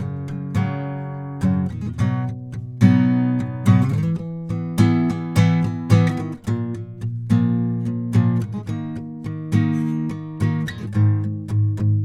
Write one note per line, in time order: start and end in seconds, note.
0.00 0.29 F#2
0.00 0.29 C#3
0.29 1.42 F#2
0.29 0.55 C#3
0.56 1.42 C#3
0.56 1.44 F#3
1.43 1.68 F#2
1.43 1.68 C#3
1.43 1.71 F#3
1.68 2.81 F2
1.68 1.93 A#2
1.72 1.86 D#3
1.88 2.00 E3
2.00 2.30 B2
2.00 2.29 F#3
2.00 2.32 B3
2.30 2.53 B2
2.55 2.82 B2
2.82 3.41 B2
2.82 3.41 F#3
2.82 3.69 B3
2.82 3.79 D#4
3.41 3.68 B2
3.41 3.66 F#3
3.68 4.17 C#3
3.68 3.90 F#3
3.68 3.86 B3
3.98 4.09 G#3
4.17 4.51 E3
4.51 4.79 E3
4.51 4.79 B3
4.79 5.10 E3
4.79 5.11 B3
4.79 5.40 E4
4.79 5.25 G#4
5.11 5.37 E3
5.11 5.37 B3
5.37 5.66 E3
5.37 5.66 B3
5.37 5.63 E4
5.63 5.91 E3
5.63 5.92 B3
5.63 5.93 E4
5.92 6.18 E3
5.92 6.18 B3
5.92 6.39 E4
6.19 6.38 D#3
6.19 6.40 B3
6.49 6.75 A#2
6.76 7.02 A#2
7.03 7.31 A#2
7.31 7.86 A#2
7.31 7.87 F3
7.31 8.15 A#3
7.87 8.14 A#2
7.87 8.14 F3
8.14 8.44 A#2
8.14 8.41 F3
8.14 8.44 A#3
8.41 8.64 A#2
8.69 8.98 D#3
8.69 8.98 A#3
8.98 9.24 D#3
8.98 9.25 A#3
9.26 9.54 D#3
9.26 9.54 B3
9.54 10.11 D#3
9.54 10.11 A#3
9.54 10.45 D#4
10.11 10.43 D#3
10.11 10.43 A#3
10.43 10.68 D#3
10.43 10.68 A#3
10.43 10.68 D#4
10.69 10.90 A#2
10.96 11.25 G#2
10.96 11.50 D#3
11.26 11.49 G#2
11.50 11.78 G#2
11.50 11.77 D#3
11.78 12.05 G#2
11.78 12.03 D#3